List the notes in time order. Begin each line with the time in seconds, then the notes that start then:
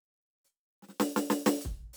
0.44 hi-hat pedal
0.82 snare
0.89 snare
1.00 snare
1.16 snare
1.30 snare
1.46 snare
1.61 closed hi-hat
1.65 kick
1.93 hi-hat pedal